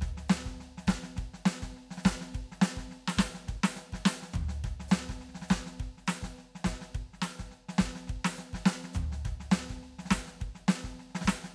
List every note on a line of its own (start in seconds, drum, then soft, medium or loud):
0.01 kick soft
0.01 snare soft
0.08 kick soft
0.17 snare soft
0.28 snare loud
0.28 hi-hat pedal medium
0.46 kick soft
0.46 snare soft
0.60 snare soft
0.77 snare soft
0.87 kick soft
0.87 snare loud
0.87 hi-hat pedal medium
0.96 kick soft
1.03 snare soft
1.16 kick soft
1.16 snare soft
1.25 kick soft
1.34 snare soft
1.45 snare loud
1.45 hi-hat pedal medium
1.62 kick soft
1.62 snare soft
1.76 snare soft
1.82 snare soft
1.88 snare soft
1.91 snare medium
1.97 snare soft
2.04 kick soft
2.04 snare loud
2.04 hi-hat pedal medium
2.10 kick soft
2.10 snare soft
2.13 kick soft
2.21 snare soft
2.34 kick soft
2.34 snare soft
2.52 snare soft
2.61 snare loud
2.61 hi-hat pedal soft
2.77 kick soft
2.77 snare soft
2.91 snare soft
3.08 snare medium
3.17 kick soft
3.17 snare loud
3.17 hi-hat pedal medium
3.34 snare soft
3.47 kick soft
3.47 snare soft
3.55 kick soft
3.63 snare loud
3.74 snare soft
3.74 hi-hat pedal medium
3.92 kick soft
3.92 snare medium
4.05 snare loud
4.22 snare soft
4.32 kick soft
4.32 floor tom loud
4.32 hi-hat pedal soft
4.45 kick soft
4.45 snare soft
4.64 kick soft
4.64 snare soft
4.70 kick soft
4.80 snare soft
4.88 snare loud
4.88 hi-hat pedal medium
5.09 kick soft
5.09 snare soft
5.21 snare soft
5.28 snare soft
5.34 snare soft
5.42 snare soft
5.48 kick soft
5.48 snare loud
5.48 hi-hat pedal medium
5.66 snare soft
5.80 kick soft
5.80 snare soft
5.86 kick soft
5.97 snare soft
6.07 snare loud
6.07 hi-hat pedal medium
6.22 kick soft
6.22 snare medium
6.38 snare soft
6.55 snare soft
6.64 kick soft
6.64 snare loud
6.64 hi-hat pedal loud
6.72 kick soft
6.75 kick soft
6.81 snare soft
6.94 kick soft
6.94 snare soft
7.02 kick soft
7.13 snare soft
7.22 snare medium
7.22 hi-hat pedal medium
7.39 kick soft
7.39 snare soft
7.51 snare soft
7.69 snare medium
7.78 kick soft
7.78 snare loud
7.78 hi-hat pedal medium
7.86 kick soft
7.95 snare soft
8.07 kick soft
8.07 snare soft
8.16 kick soft
8.24 snare loud
8.35 snare soft
8.35 hi-hat pedal medium
8.53 kick soft
8.53 snare medium
8.66 snare loud
8.84 snare soft
8.93 kick soft
8.93 floor tom loud
8.93 hi-hat pedal medium
9.03 kick soft
9.05 kick soft
9.12 snare soft
9.25 kick medium
9.25 snare soft
9.31 kick soft
9.36 kick soft
9.36 snare soft
9.51 snare loud
9.51 hi-hat pedal medium
9.69 kick soft
9.69 snare soft
9.75 kick soft
9.82 snare soft
9.99 snare soft
10.05 snare soft
10.10 kick soft
10.10 snare loud
10.10 hi-hat pedal medium
10.17 kick soft
10.27 snare soft
10.40 kick soft
10.40 snare soft
10.48 kick soft
10.55 snare soft
10.68 snare loud
10.68 hi-hat pedal medium
10.84 kick soft
10.84 snare soft
10.99 snare soft
11.09 snare soft
11.15 snare medium
11.21 kick soft
11.21 snare medium
11.21 hi-hat pedal medium
11.27 snare loud
11.44 snare soft